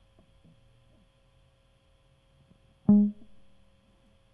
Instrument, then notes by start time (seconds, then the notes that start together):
electric guitar
2.90 G#3